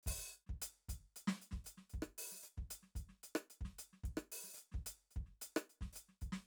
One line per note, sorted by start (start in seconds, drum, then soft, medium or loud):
0.04 open hi-hat medium
0.04 kick soft
0.04 hi-hat pedal soft
0.13 kick soft
0.33 closed hi-hat soft
0.46 kick soft
0.46 snare soft
0.61 closed hi-hat medium
0.88 closed hi-hat soft
0.88 kick soft
1.16 closed hi-hat soft
1.27 snare medium
1.41 closed hi-hat soft
1.51 kick soft
1.51 snare soft
1.64 closed hi-hat medium
1.64 hi-hat pedal soft
1.77 snare soft
1.89 closed hi-hat soft
1.89 kick soft
2.02 cross-stick medium
2.18 open hi-hat medium
2.31 snare soft
2.43 closed hi-hat soft
2.43 hi-hat pedal soft
2.57 kick soft
2.57 snare soft
2.70 closed hi-hat medium
2.82 snare soft
2.95 closed hi-hat soft
2.95 kick soft
3.08 snare soft
3.23 closed hi-hat soft
3.35 cross-stick medium
3.50 closed hi-hat soft
3.60 kick soft
3.65 snare soft
3.78 closed hi-hat medium
3.93 snare soft
4.03 kick soft
4.03 closed hi-hat soft
4.17 cross-stick medium
4.31 open hi-hat medium
4.43 snare soft
4.53 closed hi-hat soft
4.53 hi-hat pedal medium
4.71 kick soft
4.71 snare soft
4.86 closed hi-hat medium
5.10 closed hi-hat soft
5.16 kick soft
5.26 snare soft
5.41 closed hi-hat medium
5.56 cross-stick medium
5.69 closed hi-hat soft
5.81 kick soft
5.81 snare soft
5.93 closed hi-hat medium
5.93 hi-hat pedal soft
6.08 snare soft
6.21 closed hi-hat soft
6.21 kick soft
6.32 snare medium